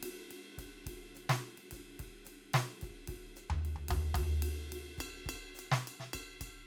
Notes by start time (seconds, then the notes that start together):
0.01 snare, hi-hat pedal, ride
0.31 ride
0.58 kick, hi-hat pedal, ride
0.86 kick, ride
0.95 kick
1.15 hi-hat pedal, ride
1.29 snare, ride
1.58 ride
1.71 kick, hi-hat pedal, ride
1.99 kick, ride
2.25 hi-hat pedal, ride
2.54 snare, ride
2.81 kick, hi-hat pedal, ride
2.88 kick
2.91 kick
3.08 kick, ride
3.36 hi-hat pedal, ride bell
3.50 floor tom
3.65 ride
3.76 floor tom
3.89 kick, hi-hat pedal, ride, floor tom
4.14 ride, floor tom
4.23 floor tom
4.42 hi-hat pedal, ride
4.72 ride
4.98 kick, hi-hat pedal, ride bell
5.03 kick
5.26 kick, ride bell
5.35 kick
5.55 hi-hat pedal
5.59 ride bell
5.72 snare
5.87 ride bell
6.00 snare
6.13 kick, hi-hat pedal, ride bell
6.41 kick, snare, ride bell
6.49 kick